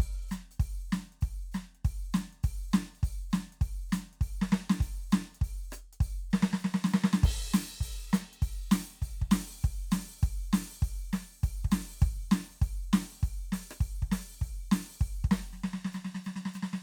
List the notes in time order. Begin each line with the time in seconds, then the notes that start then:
0.01 open hi-hat, kick
0.30 closed hi-hat, snare, hi-hat pedal
0.52 closed hi-hat
0.61 open hi-hat, kick
0.91 closed hi-hat, snare, hi-hat pedal
1.14 closed hi-hat
1.22 open hi-hat, kick
1.53 closed hi-hat, snare, hi-hat pedal
1.76 closed hi-hat
1.86 open hi-hat, kick
2.14 closed hi-hat, snare, hi-hat pedal
2.34 closed hi-hat
2.45 open hi-hat, kick
2.72 closed hi-hat, snare, hi-hat pedal
2.96 open hi-hat
3.04 open hi-hat, kick
3.31 closed hi-hat, snare, hi-hat pedal
3.54 closed hi-hat
3.62 open hi-hat, kick
3.90 closed hi-hat, snare, hi-hat pedal
4.14 closed hi-hat
4.22 open hi-hat, kick
4.43 snare
4.51 snare, hi-hat pedal
4.71 snare
4.82 open hi-hat, kick
5.11 snare, closed hi-hat, hi-hat pedal
5.36 closed hi-hat
5.43 open hi-hat, kick
5.72 closed hi-hat, cross-stick, hi-hat pedal
5.94 closed hi-hat
6.02 open hi-hat, kick
6.32 snare, hi-hat pedal
6.44 snare
6.54 snare
6.60 hi-hat pedal
6.66 snare
6.75 snare
6.85 snare, hi-hat pedal
6.95 snare
7.14 snare
7.25 kick, crash
7.55 open hi-hat, snare
7.62 snare
7.82 open hi-hat, kick
8.11 snare, hi-hat pedal
8.15 closed hi-hat
8.34 closed hi-hat
8.43 open hi-hat, kick
8.72 open hi-hat, snare
8.94 open hi-hat
9.03 open hi-hat, kick
9.23 kick
9.32 open hi-hat, snare
9.53 open hi-hat
9.63 open hi-hat, kick
9.93 open hi-hat, snare
10.13 open hi-hat
10.23 open hi-hat, kick
10.54 open hi-hat, snare
10.75 open hi-hat
10.83 open hi-hat, kick
11.14 open hi-hat, snare
11.34 open hi-hat
11.44 open hi-hat, kick
11.66 kick
11.73 open hi-hat, snare
11.92 open hi-hat
12.02 open hi-hat, kick
12.32 open hi-hat, snare
12.53 open hi-hat
12.63 open hi-hat, kick
12.94 open hi-hat, snare
13.15 open hi-hat
13.24 open hi-hat, kick
13.53 open hi-hat, snare
13.72 open hi-hat, cross-stick
13.82 open hi-hat, kick
14.03 kick
14.13 open hi-hat, snare
14.36 open hi-hat
14.43 open hi-hat, kick
14.73 open hi-hat, snare
14.94 open hi-hat
15.02 open hi-hat, kick
15.26 kick
15.32 open hi-hat, snare
15.54 snare
15.65 snare, hi-hat pedal
15.75 snare
15.86 snare
15.94 snare, hi-hat pedal
16.06 snare
16.16 snare
16.25 snare, hi-hat pedal
16.37 snare
16.47 snare
16.55 snare, hi-hat pedal
16.64 snare
16.74 snare